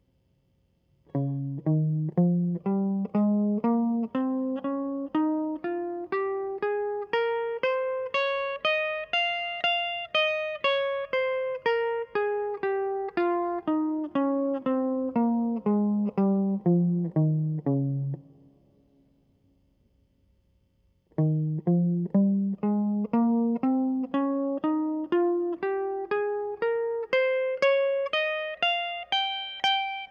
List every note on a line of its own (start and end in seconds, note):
1.16 1.63 C#3
1.68 2.12 D#3
2.18 2.60 F3
2.67 3.09 G3
3.15 3.62 G#3
3.65 4.08 A#3
4.16 4.60 C4
4.65 5.10 C#4
5.15 5.59 D#4
5.65 6.08 F4
6.13 6.61 G4
6.63 7.07 G#4
7.14 7.61 A#4
7.64 8.10 C5
8.15 8.60 C#5
8.65 9.07 D#5
9.14 9.64 F5
9.64 10.09 F5
10.15 10.58 D#5
10.65 11.08 C#5
11.13 11.59 C5
11.66 12.06 A#4
12.16 12.59 G#4
12.63 13.12 G4
13.18 13.62 F4
13.68 14.09 D#4
14.16 14.60 C#4
14.67 15.13 C4
15.16 15.61 A#3
15.67 16.13 G#3
16.18 16.59 G3
16.67 17.10 F3
17.18 17.62 D#3
17.68 18.17 C#3
21.19 21.63 D#3
21.68 22.09 F3
22.15 22.57 G3
22.64 23.09 G#3
23.14 23.60 A#3
23.64 24.08 C4
24.14 24.62 C#4
24.64 25.08 D#4
25.13 25.58 F4
25.63 26.08 G4
26.12 26.58 G#4
26.62 27.07 A#4
27.13 27.59 C5
27.63 28.09 C#5
28.14 28.58 D#5
28.63 29.06 F5
29.13 29.63 G5
29.64 30.08 G5